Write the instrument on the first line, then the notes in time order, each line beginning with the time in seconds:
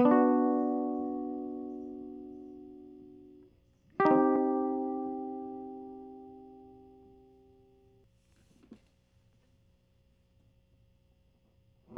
electric guitar
0.00 B3
0.05 D4
0.11 F#4
4.00 G4
4.05 D#4
4.11 C4